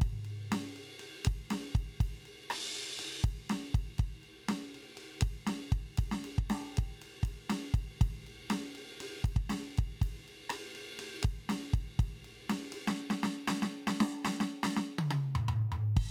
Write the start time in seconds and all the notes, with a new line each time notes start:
0.02 kick, ride
0.26 ride
0.53 snare, ride
0.77 ride
1.00 ride
1.26 kick, ride
1.51 snare, ride
1.76 kick, ride
2.01 kick, ride
2.26 ride
2.51 cross-stick, ride
2.76 ride
3.00 ride
3.25 kick, ride
3.50 snare, ride
3.75 kick, ride
3.99 kick, ride
4.24 ride
4.49 snare, ride
4.75 ride
4.98 ride
5.22 kick, ride
5.47 snare, ride
5.73 kick, ride
5.98 kick, ride
6.12 snare
6.25 ride
6.39 kick
6.51 snare, ride
6.78 kick, ride
7.03 ride
7.24 kick, ride
7.50 snare, ride
7.75 kick, ride
8.02 kick, ride
8.28 ride
8.51 snare, ride
8.76 ride
9.01 ride
9.25 kick, ride
9.37 kick
9.50 snare, ride
9.78 kick, ride
10.02 kick, ride
10.29 ride
10.50 cross-stick, ride
10.76 ride
11.00 ride
11.24 kick, ride
11.50 snare, ride
11.74 kick, ride
12.00 kick, ride
12.25 ride
12.50 snare, ride
12.73 ride
12.88 snare
13.11 snare
13.24 snare
13.48 snare
13.63 snare
13.88 snare
14.01 snare
14.26 snare
14.41 snare
14.64 snare
14.77 snare
14.99 high tom
15.11 high tom
15.36 mid tom
15.49 mid tom
15.73 mid tom
15.97 kick, crash